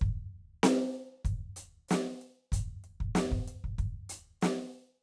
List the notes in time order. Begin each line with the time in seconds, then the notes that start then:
0.01 kick
0.63 closed hi-hat, snare
0.94 closed hi-hat
1.25 kick, closed hi-hat
1.56 closed hi-hat
1.89 closed hi-hat, snare, hi-hat pedal
2.21 closed hi-hat
2.52 closed hi-hat, kick
2.84 closed hi-hat
3.00 kick
3.15 closed hi-hat, snare
3.32 kick
3.48 closed hi-hat
3.64 kick
3.78 kick, closed hi-hat
4.09 open hi-hat
4.42 snare, hi-hat pedal
4.74 closed hi-hat